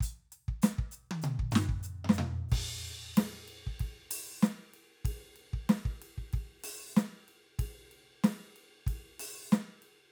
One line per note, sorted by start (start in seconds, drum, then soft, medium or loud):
0.01 closed hi-hat loud
0.01 kick medium
0.33 closed hi-hat medium
0.49 kick medium
0.62 open hi-hat loud
0.62 snare loud
0.62 hi-hat pedal medium
0.79 kick medium
0.92 hi-hat pedal medium
1.11 high tom loud
1.22 hi-hat pedal medium
1.22 mid tom loud
1.40 kick medium
1.52 floor tom loud
1.52 hi-hat pedal medium
1.56 snare loud
1.69 kick medium
1.77 kick soft
1.83 hi-hat pedal medium
2.05 floor tom medium
2.10 snare loud
2.10 hi-hat pedal medium
2.19 floor tom loud
2.49 kick loud
2.49 hi-hat pedal soft
2.49 ride loud
2.79 ride soft
3.15 snare loud
3.15 hi-hat pedal soft
3.15 ride loud
3.48 ride medium
3.67 kick medium
3.80 kick medium
3.80 ride medium
4.11 open hi-hat loud
4.11 ride medium
4.43 snare loud
4.43 hi-hat pedal medium
4.43 ride medium
4.74 ride medium
5.05 kick medium
5.05 ride loud
5.36 ride soft
5.54 kick medium
5.70 snare loud
5.70 ride medium
5.86 kick medium
6.02 ride medium
6.18 kick soft
6.33 kick medium
6.33 ride medium
6.60 hi-hat pedal soft
6.64 open hi-hat loud
6.64 ride loud
6.97 snare loud
6.97 hi-hat pedal medium
6.97 ride medium
7.29 ride soft
7.59 kick medium
7.59 ride loud
7.92 ride soft
8.24 snare loud
8.24 ride loud
8.57 ride soft
8.87 kick medium
8.87 ride medium
9.20 open hi-hat loud
9.20 ride medium
9.52 snare loud
9.52 hi-hat pedal medium
9.52 ride soft
9.83 ride soft